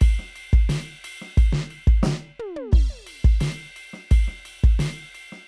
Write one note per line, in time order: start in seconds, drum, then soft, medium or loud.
0.01 kick loud
0.01 ride loud
0.19 snare soft
0.36 ride medium
0.53 kick loud
0.69 snare loud
0.69 ride loud
1.04 ride loud
1.22 snare soft
1.37 kick loud
1.37 ride medium
1.53 snare loud
1.70 ride bell medium
1.87 kick loud
1.99 kick soft
2.03 snare loud
2.06 snare loud
2.39 mid tom loud
2.56 high tom loud
2.72 kick loud
2.72 crash medium
2.90 high tom soft
3.07 ride loud
3.25 kick loud
3.41 snare loud
3.41 ride loud
3.76 ride medium
3.94 snare soft
4.11 kick loud
4.11 ride loud
4.28 snare soft
4.45 ride loud
4.64 kick loud
4.79 snare loud
4.79 ride loud
5.15 ride medium
5.32 snare soft